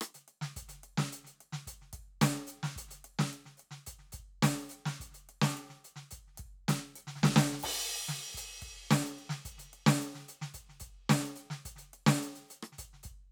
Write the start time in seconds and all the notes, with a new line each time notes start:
0.01 closed hi-hat, cross-stick
0.14 closed hi-hat, snare
0.28 closed hi-hat
0.41 snare
0.56 closed hi-hat, kick
0.62 kick
0.68 closed hi-hat, snare
0.72 snare
0.83 closed hi-hat
0.97 snare
1.12 closed hi-hat
1.24 closed hi-hat, snare
1.28 snare
1.41 closed hi-hat
1.53 snare
1.67 closed hi-hat, kick
1.81 snare
1.91 kick, snare, closed hi-hat
2.02 kick
2.21 closed hi-hat, snare
2.35 snare, open hi-hat
2.47 hi-hat pedal
2.63 snare
2.76 closed hi-hat, kick
2.82 kick
2.88 closed hi-hat, snare
2.93 snare
3.04 closed hi-hat
3.19 snare
3.33 closed hi-hat
3.46 snare
3.57 closed hi-hat, hi-hat pedal
3.71 snare
3.86 closed hi-hat, kick
3.99 snare
4.06 snare
4.09 closed hi-hat, snare
4.14 kick
4.20 kick
4.22 kick
4.42 closed hi-hat, snare
4.55 open hi-hat, snare
4.69 closed hi-hat, hi-hat pedal
4.86 snare
4.99 closed hi-hat, kick, snare
5.11 closed hi-hat, snare
5.16 snare
5.21 snare
5.29 closed hi-hat
5.42 snare
5.57 closed hi-hat
5.70 snare
5.84 closed hi-hat
5.96 snare
6.11 closed hi-hat, kick
6.27 snare
6.34 snare, closed hi-hat
6.39 kick
6.48 kick
6.68 closed hi-hat, snare
6.79 snare
6.96 hi-hat pedal, open hi-hat
7.07 snare
7.16 snare
7.22 kick, snare
7.36 snare
7.52 snare
7.59 hi-hat pedal, crash
7.64 kick
8.08 snare
8.34 closed hi-hat, kick
8.40 kick, snare
8.62 kick, closed hi-hat
8.70 kick
8.91 closed hi-hat, snare
9.01 snare
9.06 closed hi-hat
9.18 closed hi-hat
9.29 snare
9.45 closed hi-hat, kick
9.51 kick
9.58 closed hi-hat, snare
9.64 snare
9.73 closed hi-hat
9.86 snare
9.94 snare
10.01 closed hi-hat
10.15 snare
10.19 snare
10.28 closed hi-hat
10.41 snare
10.54 closed hi-hat, kick
10.69 snare
10.75 snare
10.80 closed hi-hat, kick
10.89 kick
11.09 closed hi-hat, snare
11.20 open hi-hat, snare
11.36 closed hi-hat, hi-hat pedal
11.50 snare
11.63 closed hi-hat, kick, snare
11.71 kick
11.76 closed hi-hat, snare
11.81 snare
11.86 snare
11.93 closed hi-hat
12.06 snare
12.15 snare
12.22 closed hi-hat
12.32 closed hi-hat, snare
12.37 snare
12.48 closed hi-hat, hi-hat pedal
12.63 cross-stick
12.72 snare
12.78 closed hi-hat, kick
12.93 snare
12.99 snare
13.03 closed hi-hat, kick
13.11 kick
13.14 kick